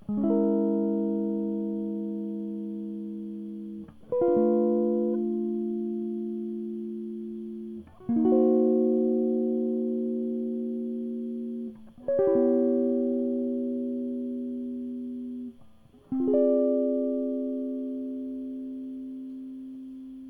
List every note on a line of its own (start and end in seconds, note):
0.09 3.86 G#3
0.17 2.55 C#4
0.24 3.87 E4
0.30 3.19 A#4
4.12 5.16 B4
4.21 7.83 F4
4.29 7.25 D4
4.37 7.84 A3
8.09 11.68 A#3
8.16 11.68 D#4
8.25 11.72 F#4
8.32 11.46 C5
12.08 14.64 C#5
12.19 15.51 G4
12.27 15.03 E4
12.35 15.50 B3
16.12 20.29 C4
16.20 18.89 F4
16.27 18.59 G#4
16.34 18.07 D5